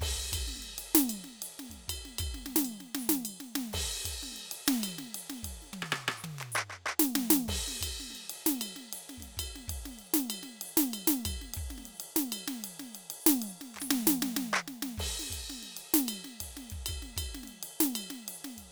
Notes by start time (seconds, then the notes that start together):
0.01 kick, crash
0.33 kick, ride bell
0.48 snare
0.56 snare
0.62 ride
0.78 ride
0.95 snare, hi-hat pedal
1.09 ride bell
1.24 snare
1.42 hi-hat pedal, ride
1.59 snare
1.70 kick, snare, ride
1.88 kick, ride bell
2.05 snare
2.19 kick, ride bell
2.26 kick
2.34 snare
2.46 snare
2.56 snare
2.61 hi-hat pedal, ride bell
2.80 snare
2.95 snare, hi-hat pedal
3.09 snare
3.25 hi-hat pedal, ride bell
3.40 snare
3.55 snare
3.73 kick, crash
3.96 snare
4.05 kick, ride
4.23 snare
4.32 snare
4.36 ride
4.51 ride
4.66 snare, hi-hat pedal
4.83 ride bell
4.98 snare
5.15 hi-hat pedal, ride
5.30 snare
5.43 kick, ride
5.57 hi-hat pedal
5.62 snare
5.73 high tom
5.82 cross-stick
5.91 cross-stick, hi-hat pedal
6.08 cross-stick
6.17 hi-hat pedal
6.24 mid tom
6.38 percussion
6.52 percussion, hi-hat pedal
6.70 percussion
6.86 percussion
7.00 snare
7.15 snare
7.30 snare
7.48 kick, crash
7.68 snare
7.81 kick, ride bell
8.00 snare
8.10 snare
8.15 ride
8.30 ride
8.46 snare, hi-hat pedal
8.61 ride bell
8.76 snare
8.93 hi-hat pedal, ride
9.09 snare
9.18 kick, snare
9.23 ride
9.37 kick, hi-hat pedal, ride bell
9.56 snare
9.68 kick, ride
9.86 snare
9.99 ride
10.04 hi-hat pedal
10.14 snare
10.30 ride bell
10.43 snare
10.61 ride
10.66 hi-hat pedal
10.77 snare
10.93 ride bell
11.08 snare
11.25 kick, hi-hat pedal, ride bell
11.31 kick
11.42 snare
11.54 kick, ride
11.70 snare
11.78 snare
11.83 snare, ride
11.94 hi-hat pedal
12.00 ride
12.16 snare
12.32 ride bell
12.48 snare
12.64 hi-hat pedal, ride
12.79 snare
12.92 hi-hat pedal, ride
13.10 ride
13.21 hi-hat pedal
13.26 snare
13.42 ride
13.47 hi-hat pedal
13.61 snare
13.74 kick, percussion
13.80 snare, hi-hat pedal
13.91 snare
14.07 snare
14.22 snare
14.37 snare
14.53 percussion
14.68 snare
14.82 snare
14.95 kick, hi-hat pedal, crash
15.19 snare
15.30 kick, ride
15.50 snare
15.62 snare, ride
15.77 ride
15.94 snare, hi-hat pedal
16.08 ride bell
16.24 snare
16.40 kick, hi-hat pedal, ride
16.57 snare
16.70 kick, ride
16.86 kick, ride bell
17.02 snare
17.17 kick, ride bell
17.35 snare
17.43 snare
17.48 ride
17.63 ride
17.80 snare, hi-hat pedal
17.95 ride bell
18.10 snare
18.28 ride
18.33 hi-hat pedal
18.44 snare
18.57 kick, ride